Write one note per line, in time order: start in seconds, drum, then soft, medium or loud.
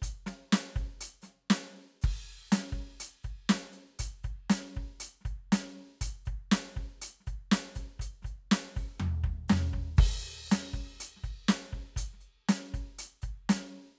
0.02 closed hi-hat loud
0.02 kick medium
0.02 snare soft
0.26 closed hi-hat medium
0.26 snare medium
0.53 closed hi-hat loud
0.53 snare loud
0.76 closed hi-hat soft
0.76 kick medium
1.01 closed hi-hat loud
1.22 closed hi-hat soft
1.22 snare soft
1.22 hi-hat pedal medium
1.50 closed hi-hat loud
1.50 snare loud
2.02 kick medium
2.02 hi-hat pedal medium
2.02 crash medium
2.52 closed hi-hat loud
2.52 snare loud
2.57 snare medium
2.72 kick medium
2.72 closed hi-hat soft
3.00 closed hi-hat loud
3.24 closed hi-hat soft
3.24 kick soft
3.49 closed hi-hat loud
3.49 snare loud
3.55 snare soft
3.73 closed hi-hat soft
3.99 closed hi-hat loud
3.99 kick soft
4.24 closed hi-hat soft
4.24 kick medium
4.50 closed hi-hat loud
4.50 snare loud
4.75 kick soft
4.75 closed hi-hat soft
5.00 closed hi-hat loud
5.21 snare soft
5.25 closed hi-hat soft
5.25 kick medium
5.52 closed hi-hat loud
5.52 snare loud
5.76 closed hi-hat soft
6.01 closed hi-hat loud
6.01 kick medium
6.26 closed hi-hat soft
6.26 kick medium
6.52 closed hi-hat loud
6.52 snare loud
6.77 kick soft
6.77 closed hi-hat soft
7.02 closed hi-hat loud
7.20 snare soft
7.27 closed hi-hat soft
7.27 kick soft
7.52 closed hi-hat loud
7.52 snare loud
7.75 closed hi-hat soft
7.75 kick soft
7.99 closed hi-hat medium
7.99 kick soft
8.22 closed hi-hat soft
8.22 kick soft
8.22 snare soft
8.51 closed hi-hat loud
8.51 snare loud
8.76 open hi-hat soft
8.76 kick medium
9.00 floor tom loud
9.24 kick medium
9.24 floor tom soft
9.48 snare loud
9.48 floor tom loud
9.48 hi-hat pedal medium
9.73 kick medium
9.73 floor tom soft
9.97 kick loud
9.97 hi-hat pedal medium
9.97 crash loud
10.46 hi-hat pedal medium
10.52 closed hi-hat loud
10.52 snare loud
10.74 closed hi-hat soft
10.74 kick medium
10.95 snare soft
11.00 closed hi-hat loud
11.17 snare soft
11.24 closed hi-hat soft
11.24 kick soft
11.49 closed hi-hat loud
11.49 snare loud
11.73 kick soft
11.73 closed hi-hat soft
11.96 closed hi-hat loud
11.96 kick medium
12.13 snare soft
12.21 closed hi-hat soft
12.49 closed hi-hat loud
12.49 snare loud
12.74 closed hi-hat soft
12.74 kick medium
12.99 closed hi-hat loud
13.22 closed hi-hat soft
13.22 kick soft
13.49 closed hi-hat loud
13.49 snare loud
13.56 snare soft
13.73 closed hi-hat soft